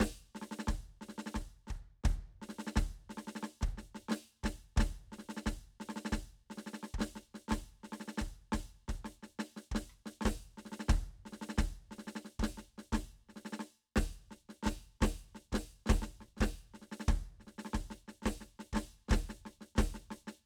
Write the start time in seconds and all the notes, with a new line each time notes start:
0.03 snare
0.35 snare
0.42 snare
0.51 snare
0.59 snare
0.67 kick, snare
1.01 snare
1.09 snare
1.18 snare
1.26 snare
1.34 kick, snare
1.67 kick, snare
2.04 kick, snare
2.42 snare
2.49 snare
2.59 snare
2.67 snare
2.76 kick, snare
3.10 snare
3.17 snare
3.27 snare
3.35 snare
3.43 snare
3.61 kick, snare
3.78 snare
3.95 snare
4.09 snare
4.11 snare
4.43 kick, snare
4.45 snare
4.76 kick, snare
4.79 snare
5.12 snare
5.19 snare
5.29 snare
5.37 snare
5.46 kick, snare
5.80 snare
5.89 snare
5.96 snare
6.05 snare
6.12 kick, snare
6.50 snare
6.57 snare
6.66 snare
6.73 snare
6.83 snare
6.94 kick
6.98 snare
7.00 snare
7.15 snare
7.34 snare
7.48 snare
7.51 kick, snare
7.83 snare
7.92 snare
8.00 snare
8.08 snare
8.18 kick, snare
8.52 kick, snare
8.88 kick, snare
9.05 snare
9.23 snare
9.39 snare
9.56 snare
9.71 kick, snare
9.75 snare
9.90 cross-stick
10.06 snare
10.21 snare
10.25 kick, snare
10.57 snare
10.65 snare
10.72 snare
10.79 snare
10.88 kick, snare
11.25 snare
11.32 snare
11.41 snare
11.49 snare
11.58 kick, snare
11.91 snare
11.98 snare
12.07 snare
12.15 snare
12.25 snare
12.39 kick, snare
12.43 snare
12.57 snare
12.78 snare
12.92 kick, snare
13.29 snare
13.36 snare
13.45 snare
13.53 snare
13.59 snare
13.96 kick, snare
14.31 snare
14.49 snare
14.63 snare
14.66 kick, snare
15.01 kick, snare
15.02 snare
15.35 snare
15.52 kick, snare
15.54 snare
15.86 snare
15.89 kick, snare
16.02 snare
16.21 snare
16.37 kick, snare
16.42 snare
16.74 snare
16.82 snare
16.92 snare
17.00 snare
17.08 kick, snare
17.40 snare
17.47 snare
17.58 snare
17.65 snare
17.73 kick, snare
17.90 snare
18.08 snare
18.22 kick, snare
18.26 snare
18.41 snare
18.59 snare
18.73 kick, snare
18.76 snare
19.09 kick, snare
19.12 snare
19.29 snare
19.45 snare
19.61 snare
19.75 snare
19.78 kick, snare
19.94 snare
20.11 snare
20.27 snare